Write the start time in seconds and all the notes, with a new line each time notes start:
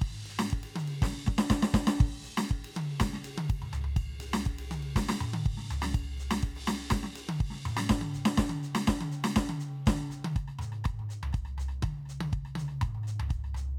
0.01 kick, hi-hat pedal, crash
0.26 hi-hat pedal, ride bell
0.39 snare
0.50 kick, hi-hat pedal, ride
0.63 ride
0.76 hi-hat pedal, high tom
0.88 ride
1.02 kick, snare, hi-hat pedal, ride
1.11 snare
1.27 kick, snare, hi-hat pedal
1.38 snare
1.50 kick, snare, hi-hat pedal
1.63 snare
1.74 kick, snare, hi-hat pedal
1.87 snare
2.00 kick, crash
2.24 hi-hat pedal, ride
2.37 snare
2.48 kick, hi-hat pedal, ride
2.65 ride
2.74 hi-hat pedal, high tom
2.88 ride
3.00 kick, snare, hi-hat pedal, ride
3.13 snare
3.24 hi-hat pedal, ride
3.38 high tom
3.48 kick, hi-hat pedal, ride
3.62 mid tom
3.73 floor tom, hi-hat pedal
3.84 floor tom
3.96 kick, hi-hat pedal, ride bell
4.20 hi-hat pedal, ride
4.34 snare
4.45 kick, hi-hat pedal, ride
4.59 ride
4.71 hi-hat pedal, high tom
4.83 ride
4.96 kick, snare, hi-hat pedal, ride
5.09 snare
5.20 hi-hat pedal, mid tom
5.34 high tom
5.44 kick, hi-hat pedal, ride
5.57 snare
5.64 snare
5.71 floor tom, hi-hat pedal
5.82 snare
5.94 kick, hi-hat pedal, ride bell
6.18 hi-hat pedal, ride
6.31 snare
6.43 kick, hi-hat pedal, ride
6.56 ride
6.68 snare, hi-hat pedal
6.79 ride
6.90 kick, snare, hi-hat pedal, ride
7.03 snare
7.16 hi-hat pedal, ride
7.29 high tom
7.40 kick, hi-hat pedal, ride
7.50 snare
7.54 snare
7.65 hi-hat pedal, mid tom
7.77 snare
7.90 kick, snare, hi-hat pedal
8.01 high tom
8.14 kick, hi-hat pedal
8.26 snare
8.38 kick, snare, hi-hat pedal
8.49 high tom
8.63 hi-hat pedal
8.75 snare
8.86 kick, snare, hi-hat pedal
9.01 high tom
9.12 hi-hat pedal
9.24 snare
9.36 kick, snare, hi-hat pedal
9.49 high tom
9.60 hi-hat pedal
9.86 kick, snare, hi-hat pedal, high tom
10.10 cross-stick, hi-hat pedal
10.25 high tom
10.36 kick, cross-stick, hi-hat pedal
10.48 cross-stick
10.59 hi-hat pedal, mid tom
10.72 cross-stick
10.84 kick, cross-stick, hi-hat pedal, mid tom
10.99 mid tom
11.09 cross-stick, hi-hat pedal
11.23 floor tom
11.33 kick, cross-stick, hi-hat pedal
11.45 cross-stick
11.58 floor tom, hi-hat pedal
11.69 cross-stick
11.83 kick, cross-stick, hi-hat pedal, high tom
11.94 high tom
11.97 high tom
12.06 cross-stick, hi-hat pedal
12.21 high tom
12.32 kick, cross-stick, hi-hat pedal
12.45 cross-stick
12.56 hi-hat pedal, high tom
12.68 cross-stick
12.81 kick, cross-stick, hi-hat pedal, mid tom
12.95 mid tom
13.03 cross-stick, hi-hat pedal
13.20 floor tom
13.30 kick, cross-stick, hi-hat pedal
13.44 cross-stick
13.55 floor tom, hi-hat pedal